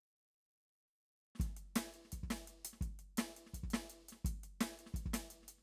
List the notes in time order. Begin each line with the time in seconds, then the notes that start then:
1.35 snare
1.38 kick, snare
1.41 snare, closed hi-hat
1.44 snare
1.57 closed hi-hat
1.76 snare, closed hi-hat
1.94 closed hi-hat
2.05 snare
2.12 kick, closed hi-hat
2.23 kick
2.30 snare, closed hi-hat
2.47 closed hi-hat
2.65 closed hi-hat
2.73 snare
2.81 kick, closed hi-hat
2.99 closed hi-hat
3.17 snare, closed hi-hat
3.36 closed hi-hat
3.46 snare
3.54 kick, closed hi-hat
3.63 kick
3.70 snare, closed hi-hat
3.90 closed hi-hat
4.08 snare, closed hi-hat
4.25 kick, closed hi-hat
4.43 closed hi-hat
4.61 snare, closed hi-hat
4.79 closed hi-hat
4.86 snare
4.94 kick, closed hi-hat
5.06 kick
5.13 snare, closed hi-hat
5.30 closed hi-hat
5.43 snare
5.48 closed hi-hat
5.58 snare